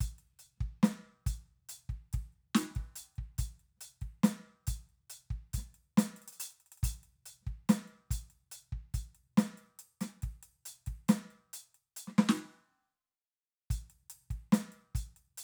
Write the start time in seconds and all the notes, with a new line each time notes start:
0.01 closed hi-hat, kick
0.18 closed hi-hat
0.39 closed hi-hat
0.57 kick, snare
0.62 closed hi-hat
0.83 closed hi-hat, snare
1.26 closed hi-hat, kick
1.47 closed hi-hat
1.69 closed hi-hat
1.89 kick, closed hi-hat
2.13 kick, closed hi-hat
2.33 closed hi-hat
2.55 closed hi-hat, snare
2.75 kick, closed hi-hat
2.96 closed hi-hat
3.16 kick, closed hi-hat
3.38 closed hi-hat, kick
3.60 closed hi-hat
3.77 closed hi-hat, snare
4.01 kick, closed hi-hat
4.24 closed hi-hat, snare
4.67 closed hi-hat, kick
4.89 closed hi-hat
5.10 closed hi-hat
5.30 kick, closed hi-hat
5.53 closed hi-hat, kick
5.57 snare
5.65 kick
5.74 closed hi-hat
5.98 closed hi-hat, snare
6.16 closed hi-hat
6.22 closed hi-hat
6.28 closed hi-hat
6.32 closed hi-hat
6.40 closed hi-hat
6.51 closed hi-hat
6.60 closed hi-hat
6.66 closed hi-hat
6.72 closed hi-hat
6.78 closed hi-hat
6.83 closed hi-hat, kick
7.03 closed hi-hat
7.26 closed hi-hat
7.42 snare
7.47 kick, closed hi-hat
7.69 closed hi-hat, snare
7.88 closed hi-hat
8.11 closed hi-hat, kick
8.30 closed hi-hat
8.52 closed hi-hat
8.72 kick
8.94 closed hi-hat, kick
9.15 closed hi-hat
9.38 closed hi-hat, snare
9.58 closed hi-hat
9.79 closed hi-hat
10.01 closed hi-hat, snare
10.22 kick, closed hi-hat
10.43 closed hi-hat
10.66 closed hi-hat
10.86 kick, closed hi-hat
11.09 closed hi-hat, snare
11.31 closed hi-hat
11.53 closed hi-hat
11.75 closed hi-hat
11.96 closed hi-hat
12.07 snare
12.18 snare
12.29 snare
13.70 closed hi-hat, kick
13.90 closed hi-hat
14.10 closed hi-hat
14.30 kick, closed hi-hat
14.52 closed hi-hat, snare
14.72 closed hi-hat
14.95 closed hi-hat, kick
15.16 closed hi-hat
15.38 closed hi-hat